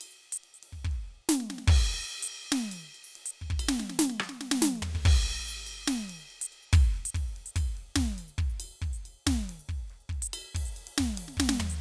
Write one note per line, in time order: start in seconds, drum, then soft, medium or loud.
0.01 ride bell medium
0.11 closed hi-hat medium
0.24 ride soft
0.33 closed hi-hat loud
0.44 ride soft
0.54 closed hi-hat medium
0.63 ride medium
0.73 kick soft
0.85 kick medium
0.92 percussion soft
0.92 mid tom soft
0.92 ride soft
1.30 snare loud
1.30 hi-hat pedal medium
1.41 snare soft
1.51 snare medium
1.59 snare soft
1.68 kick loud
1.68 hi-hat pedal soft
1.68 crash loud
2.01 closed hi-hat medium
2.12 ride soft
2.23 closed hi-hat loud
2.33 ride soft
2.44 ride soft
2.53 snare loud
2.72 ride bell medium
2.95 ride bell soft
3.05 open hi-hat medium
3.16 ride medium
3.26 closed hi-hat loud
3.42 kick soft
3.51 kick medium
3.60 ride bell loud
3.69 snare loud
3.80 snare medium
3.90 snare medium
4.00 snare loud
4.10 snare soft
4.21 cross-stick loud
4.30 snare medium
4.41 snare medium
4.52 snare loud
4.63 snare loud
4.76 crash soft
4.83 floor tom loud
4.95 kick medium
4.95 crash soft
5.06 kick loud
5.06 crash loud
5.48 hi-hat pedal medium
5.67 ride bell medium
5.88 snare loud
5.88 hi-hat pedal medium
6.10 ride medium
6.20 closed hi-hat soft
6.31 ride soft
6.42 closed hi-hat loud
6.53 ride bell soft
6.63 closed hi-hat soft
6.73 kick loud
6.73 ride bell medium
6.84 closed hi-hat soft
6.95 ride soft
7.06 closed hi-hat loud
7.15 kick medium
7.15 ride medium
7.28 closed hi-hat soft
7.37 ride soft
7.46 closed hi-hat loud
7.56 kick medium
7.56 ride bell medium
7.78 ride soft
7.96 kick medium
7.96 snare loud
8.19 ride bell medium
8.29 closed hi-hat medium
8.39 kick medium
8.39 ride soft
8.50 closed hi-hat soft
8.60 ride bell medium
8.82 kick medium
8.82 ride soft
8.94 closed hi-hat medium
9.06 ride bell soft
9.27 kick medium
9.27 snare loud
9.50 ride medium
9.60 closed hi-hat medium
9.69 kick medium
9.69 ride soft
9.90 percussion soft
9.90 ride soft
10.01 closed hi-hat soft
10.10 kick medium
10.10 ride soft
10.23 closed hi-hat loud
10.34 ride bell loud
10.55 kick medium
10.55 ride loud
10.66 closed hi-hat medium
10.77 ride bell soft
10.88 ride medium
10.98 kick soft
10.98 snare loud
11.18 ride loud
11.29 snare soft
11.38 kick medium
11.38 snare loud
11.50 snare loud
11.60 floor tom loud
11.70 closed hi-hat medium